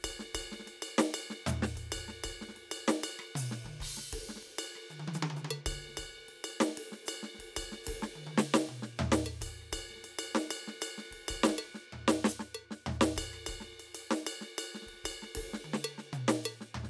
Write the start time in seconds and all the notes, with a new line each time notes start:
0.01 kick, hi-hat pedal, ride bell
0.19 snare
0.35 kick, ride bell
0.52 snare
0.60 snare
0.66 snare, ride bell
0.82 ride bell
0.98 snare
1.14 ride bell
1.30 snare
1.46 hi-hat pedal, floor tom
1.62 snare
1.75 kick, ride bell
1.92 kick, ride bell
2.01 kick
2.08 snare
2.24 kick, ride bell
2.41 snare
2.49 snare
2.56 snare, ride
2.71 ride bell
2.88 snare
3.04 ride bell
3.19 cross-stick
3.35 hi-hat pedal, mid tom
3.51 snare
3.64 kick, snare, high tom
3.80 kick, crash
3.97 snare
4.13 kick, ride
4.19 kick
4.29 snare
4.36 snare
4.43 ride
4.59 ride bell
4.76 cross-stick
4.90 hi-hat pedal, high tom
5.00 high tom
5.08 high tom
5.14 hi-hat pedal, high tom
5.23 high tom
5.30 high tom
5.36 hi-hat pedal, high tom
5.45 high tom
5.51 percussion
5.66 kick, ride bell
5.84 kick
5.89 snare
5.95 snare, ride bell
5.99 kick
6.29 ride
6.44 ride bell
6.60 snare
6.68 snare
6.77 ride
6.92 snare
7.06 hi-hat pedal, ride bell
7.23 snare
7.34 snare
7.39 kick, ride
7.57 kick, ride bell
7.62 kick
7.72 snare
7.84 hi-hat pedal, ride
7.88 kick
7.95 kick
8.02 snare
8.07 kick
8.16 high tom
8.27 closed hi-hat, high tom
8.38 snare
8.54 snare
8.65 hi-hat pedal, mid tom
8.82 snare
8.96 hi-hat pedal, floor tom
9.12 snare
9.24 hi-hat pedal, percussion
9.35 cross-stick
9.41 kick, ride bell
9.46 hi-hat pedal
9.62 cross-stick
9.72 kick, ride bell
9.90 snare
9.96 snare
10.03 snare, ride bell
10.19 ride bell
10.35 snare
10.51 ride bell
10.68 snare
10.81 hi-hat pedal, ride bell
10.98 snare
11.05 cross-stick
11.11 kick, ride
11.28 kick, ride bell
11.44 snare
11.48 snare
11.58 percussion
11.74 snare
11.93 floor tom
12.08 snare
12.24 snare, hi-hat pedal
12.40 snare
12.55 percussion
12.71 snare
12.86 floor tom
12.93 hi-hat pedal
13.01 snare
13.16 kick, hi-hat pedal, ride bell
13.22 kick
13.33 cross-stick
13.47 kick, ride bell
13.60 snare
13.71 snare
13.80 ride bell
13.95 ride bell
14.11 snare
14.27 ride bell
14.41 snare
14.58 hi-hat pedal, ride bell
14.75 snare
14.82 snare
14.86 kick, ride
14.93 snare
15.04 kick, hi-hat pedal, ride bell
15.22 snare
15.35 kick, ride
15.43 kick
15.53 snare
15.64 high tom
15.74 snare
15.80 hi-hat pedal, percussion
15.98 snare
16.13 hi-hat pedal, mid tom
16.28 snare
16.44 hi-hat pedal, percussion
16.61 snare
16.75 floor tom
16.84 snare